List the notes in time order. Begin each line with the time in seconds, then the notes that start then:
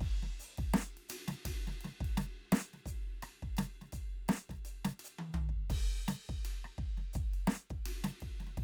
0.01 kick, ride
0.23 snare
0.39 snare, hi-hat pedal
0.58 kick, ride
0.74 snare
0.97 ride
1.09 kick, hi-hat pedal, ride
1.28 snare
1.46 kick, ride
1.67 snare
1.81 snare, ride
2.01 kick
2.05 ride
2.18 snare
2.53 snare, ride bell
2.74 snare
2.86 kick, hi-hat pedal, ride
3.23 cross-stick, ride bell
3.43 kick
3.57 snare, ride bell
3.82 snare
3.93 kick, hi-hat pedal, ride bell
4.29 snare, ride bell
4.50 kick, snare
4.65 hi-hat pedal, ride bell
4.85 snare
5.00 ride bell
5.05 hi-hat pedal
5.19 high tom
5.33 floor tom, hi-hat pedal
5.49 kick
5.70 kick, ride bell, crash
6.08 snare, hi-hat pedal
6.29 kick
6.45 ride bell
6.65 cross-stick
6.79 kick
6.98 snare
7.14 kick, hi-hat pedal, ride bell
7.34 ride bell
7.48 snare
7.70 kick, ride bell
7.86 ride
8.04 snare
8.21 kick, ride
8.40 snare
8.47 snare
8.58 kick, ride